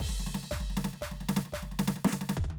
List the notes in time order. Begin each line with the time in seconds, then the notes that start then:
0.01 kick, crash
0.09 snare
0.20 snare
0.27 snare
0.35 snare
0.43 snare
0.52 kick, percussion
0.60 snare
0.70 snare
0.77 snare
0.85 snare
0.94 snare
1.02 kick, percussion
1.12 snare
1.21 snare
1.29 snare
1.37 snare
1.46 snare
1.53 kick, percussion
1.63 snare
1.72 snare
1.79 snare
1.88 snare
1.96 snare
2.05 snare
2.13 snare
2.22 snare
2.30 snare
2.37 kick
2.45 kick
2.49 kick, floor tom